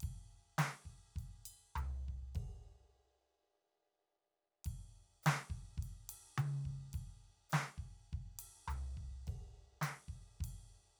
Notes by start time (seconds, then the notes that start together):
0.01 kick, ride
0.58 snare, hi-hat pedal, ride
0.85 kick
1.16 kick, ride
1.46 ride bell
1.76 floor tom, hi-hat pedal
2.08 kick
2.35 kick, crash
4.65 kick, ride
5.23 snare, hi-hat pedal, ride
5.50 kick
5.78 kick
5.83 ride
6.09 ride
6.38 hi-hat pedal, high tom
6.65 kick
6.93 kick, ride
7.50 snare, hi-hat pedal, ride
7.78 kick
8.13 kick
8.39 ride
8.68 floor tom, hi-hat pedal
8.97 kick
9.27 kick, crash
9.81 snare, hi-hat pedal, ride
10.08 kick
10.41 kick, ride